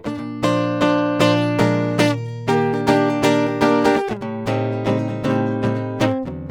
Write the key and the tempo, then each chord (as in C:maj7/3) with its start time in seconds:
G minor, 119 BPM
0.20 A#:9
2.22 D#:maj7/5
4.24 A:7(b5,#9,*5)
6.25 D:7(#9,*5)